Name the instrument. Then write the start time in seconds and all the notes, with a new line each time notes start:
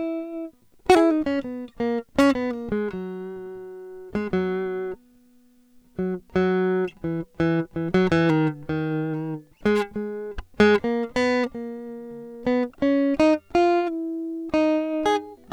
acoustic guitar
0.00 E4
0.90 F4
1.01 E4
1.11 D#4
1.27 C#4
1.40 B3
1.81 A#3
2.19 C#4
2.30 B3
2.52 A#3
2.73 G#3
2.90 F#3
4.16 G#3
4.34 F#3
5.99 F#3
6.36 F#3
7.05 E3
7.41 E3
7.77 E3
7.95 F#3
8.12 E3
8.31 D#3
8.70 D#3
9.66 G#3
9.97 G#3
10.61 G#3
10.85 A#3
11.17 B3
11.56 A#3
12.47 B3
12.83 C#4
13.21 D#4
13.56 F4
13.88 E4
14.55 D#4
15.06 G#4